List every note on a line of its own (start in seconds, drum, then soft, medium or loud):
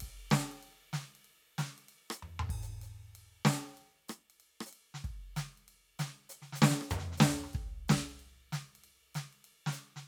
0.01 kick soft
0.01 ride medium
0.09 hi-hat pedal soft
0.31 snare loud
0.31 hi-hat pedal medium
0.31 ride soft
0.52 ride soft
0.63 ride soft
0.94 snare medium
0.94 hi-hat pedal soft
0.94 ride soft
1.16 ride soft
1.25 ride soft
1.59 snare medium
1.59 hi-hat pedal medium
1.59 ride soft
1.79 ride soft
1.89 ride soft
2.11 cross-stick medium
2.11 hi-hat pedal soft
2.23 mid tom medium
2.40 high tom medium
2.50 kick medium
2.50 crash soft
2.63 hi-hat pedal soft
2.82 hi-hat pedal soft
2.82 ride soft
3.05 ride soft
3.16 ride soft
3.46 snare loud
3.46 hi-hat pedal soft
3.78 ride soft
4.09 cross-stick medium
4.09 hi-hat pedal medium
4.31 ride soft
4.61 cross-stick medium
4.67 hi-hat pedal medium
4.73 ride soft
4.95 snare medium
5.05 kick medium
5.05 ride soft
5.37 snare medium
5.37 hi-hat pedal medium
5.37 ride soft
5.58 ride soft
5.69 ride soft
6.00 snare medium
6.00 hi-hat pedal medium
6.00 ride soft
6.30 hi-hat pedal medium
6.30 ride soft
6.43 snare soft
6.53 snare medium
6.53 hi-hat pedal medium
6.63 snare loud
6.71 snare medium
6.82 cross-stick medium
6.91 hi-hat pedal medium
6.91 mid tom loud
7.00 snare soft
7.13 snare soft
7.18 snare loud
7.18 hi-hat pedal medium
7.30 floor tom medium
7.44 floor tom soft
7.54 kick medium
7.54 ride soft
7.89 snare loud
7.89 hi-hat pedal medium
7.89 ride medium
8.10 ride soft
8.20 ride soft
8.53 snare medium
8.53 hi-hat pedal soft
8.53 ride soft
8.76 ride soft
8.84 ride soft
9.15 snare medium
9.15 hi-hat pedal medium
9.15 ride soft
9.33 ride soft
9.45 ride soft
9.67 snare medium
9.73 hi-hat pedal medium
9.79 ride soft
9.97 snare soft